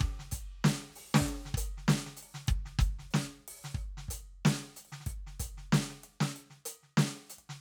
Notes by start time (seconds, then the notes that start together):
0.01 kick, closed hi-hat
0.19 snare
0.32 closed hi-hat, kick
0.54 snare
0.64 snare, hi-hat pedal
0.80 snare
0.90 snare, hi-hat pedal
0.96 open hi-hat
1.14 snare
1.21 kick
1.28 closed hi-hat
1.46 snare
1.54 closed hi-hat, kick
1.78 snare
1.88 snare, hi-hat pedal
2.06 snare
2.17 closed hi-hat
2.23 open hi-hat
2.34 snare
2.46 kick, snare, open hi-hat
2.51 hi-hat pedal
2.66 snare
2.79 closed hi-hat, kick
2.99 snare
3.11 snare, hi-hat pedal
3.48 open hi-hat
3.64 snare
3.75 kick, hi-hat pedal
3.97 snare
4.09 closed hi-hat, kick
4.45 snare
4.60 snare
4.68 snare
4.76 closed hi-hat
4.85 open hi-hat
4.92 snare
5.00 snare
5.06 kick, open hi-hat
5.11 hi-hat pedal
5.27 snare
5.40 closed hi-hat, kick
5.58 snare
5.62 kick
5.73 snare
5.89 snare
6.04 closed hi-hat
6.21 snare
6.36 open hi-hat
6.50 snare
6.66 closed hi-hat
6.83 snare
6.97 snare
7.17 snare
7.22 snare
7.30 closed hi-hat
7.38 kick, closed hi-hat
7.49 snare